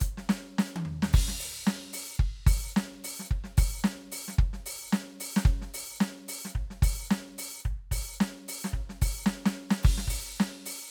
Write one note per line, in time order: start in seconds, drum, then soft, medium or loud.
0.01 closed hi-hat loud
0.01 kick medium
0.18 snare medium
0.30 snare loud
0.59 snare loud
0.67 hi-hat pedal medium
0.76 high tom loud
0.86 floor tom medium
1.03 snare loud
1.14 kick loud
1.14 crash loud
1.29 snare medium
1.40 open hi-hat loud
1.64 snare loud
1.64 hi-hat pedal medium
1.94 open hi-hat loud
2.16 kick loud
2.16 hi-hat pedal medium
2.47 open hi-hat loud
2.47 kick loud
2.72 hi-hat pedal medium
2.77 snare loud
3.05 open hi-hat loud
3.20 snare medium
3.27 closed hi-hat soft
3.27 hi-hat pedal medium
3.31 kick medium
3.44 snare medium
3.58 open hi-hat loud
3.58 kick loud
3.82 snare loud
3.82 hi-hat pedal medium
4.12 open hi-hat loud
4.29 snare medium
4.34 hi-hat pedal medium
4.39 kick loud
4.39 closed hi-hat soft
4.54 snare soft
4.66 open hi-hat loud
4.91 snare loud
4.91 hi-hat pedal medium
5.21 open hi-hat loud
5.37 snare loud
5.37 hi-hat pedal medium
5.46 kick loud
5.46 closed hi-hat medium
5.62 snare medium
5.74 open hi-hat loud
5.98 snare loud
5.98 hi-hat pedal medium
6.29 open hi-hat loud
6.45 snare medium
6.50 hi-hat pedal medium
6.56 kick medium
6.56 closed hi-hat soft
6.71 snare soft
6.83 open hi-hat loud
6.83 kick loud
7.08 snare loud
7.08 hi-hat pedal medium
7.39 open hi-hat loud
7.61 closed hi-hat soft
7.61 hi-hat pedal medium
7.66 kick medium
7.92 open hi-hat loud
7.92 kick medium
8.17 hi-hat pedal medium
8.21 snare loud
8.49 open hi-hat loud
8.65 snare medium
8.70 hi-hat pedal medium
8.74 kick medium
8.74 closed hi-hat soft
8.90 snare medium
9.02 open hi-hat loud
9.02 kick medium
9.24 snare loud
9.24 hi-hat pedal medium
9.46 snare loud
9.70 snare loud
9.70 hi-hat pedal medium
9.84 kick loud
9.84 crash loud
9.98 snare medium
10.08 open hi-hat loud
10.08 kick medium
10.37 snare loud
10.37 hi-hat pedal medium
10.66 open hi-hat loud